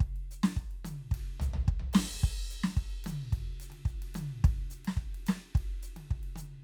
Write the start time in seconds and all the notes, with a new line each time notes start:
0.01 kick, ride
0.17 ride
0.32 hi-hat pedal, ride bell
0.44 snare
0.57 kick, hi-hat pedal, ride
0.72 ride
0.85 hi-hat pedal, high tom, ride
1.11 kick, hi-hat pedal, ride
1.41 floor tom, hi-hat pedal
1.54 floor tom
1.69 kick
1.80 floor tom
1.94 snare, hi-hat pedal, crash
2.23 kick, hi-hat pedal, ride
2.51 hi-hat pedal, ride
2.64 snare
2.77 kick, hi-hat pedal, ride
2.91 ride
3.05 hi-hat pedal, high tom, ride
3.33 kick, hi-hat pedal, ride
3.61 hi-hat pedal, ride
3.71 high tom, ride
3.86 kick, hi-hat pedal
4.03 ride
4.15 hi-hat pedal, high tom, ride
4.45 kick, ride
4.71 hi-hat pedal, ride
4.86 snare, ride
4.97 kick
5.15 ride
5.27 kick, snare, hi-hat pedal, ride
5.56 kick, ride
5.83 kick, hi-hat pedal, ride
5.97 high tom, ride
6.11 kick
6.24 ride
6.36 kick, hi-hat pedal, high tom, ride